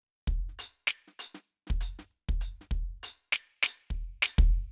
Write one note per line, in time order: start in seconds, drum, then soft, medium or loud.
0.27 kick medium
0.27 closed hi-hat soft
0.49 snare soft
0.59 closed hi-hat loud
0.87 snare loud
1.07 snare soft
1.19 closed hi-hat loud
1.34 snare soft
1.67 kick medium
1.67 snare soft
1.81 closed hi-hat medium
1.99 snare soft
2.11 closed hi-hat soft
2.29 kick medium
2.29 snare soft
2.41 closed hi-hat medium
2.61 snare soft
2.71 kick medium
2.71 closed hi-hat soft
3.03 closed hi-hat loud
3.32 closed hi-hat medium
3.32 snare loud
3.63 closed hi-hat loud
3.63 snare loud
3.90 kick medium
3.90 closed hi-hat soft
4.22 closed hi-hat loud
4.22 snare loud
4.38 kick loud